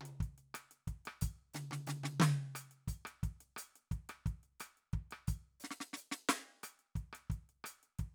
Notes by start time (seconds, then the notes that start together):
0.01 high tom
0.05 closed hi-hat
0.20 kick, closed hi-hat
0.38 closed hi-hat
0.54 cross-stick, closed hi-hat
0.71 closed hi-hat
0.87 kick, closed hi-hat
1.05 cross-stick, closed hi-hat
1.21 closed hi-hat, kick
1.54 snare, hi-hat pedal, high tom
1.71 snare, high tom
1.87 snare, hi-hat pedal, high tom
2.04 snare, high tom
2.20 snare, high tom
2.55 closed hi-hat, cross-stick
2.71 closed hi-hat
2.88 closed hi-hat, kick
3.05 cross-stick, closed hi-hat
3.23 kick, closed hi-hat
3.41 closed hi-hat
3.57 closed hi-hat, cross-stick
3.76 closed hi-hat
3.91 kick, closed hi-hat
4.09 cross-stick, closed hi-hat
4.26 kick, closed hi-hat
4.43 closed hi-hat
4.60 closed hi-hat, cross-stick
4.77 closed hi-hat
4.93 kick, closed hi-hat
5.11 cross-stick, closed hi-hat
5.28 closed hi-hat, kick
5.60 snare, hi-hat pedal
5.71 snare
5.81 snare
5.93 snare, hi-hat pedal
6.12 snare
6.29 snare
6.63 closed hi-hat, cross-stick
6.79 closed hi-hat
6.96 kick, closed hi-hat
7.13 cross-stick, closed hi-hat
7.30 kick, closed hi-hat
7.49 closed hi-hat
7.64 closed hi-hat, cross-stick
7.83 closed hi-hat
7.99 kick, closed hi-hat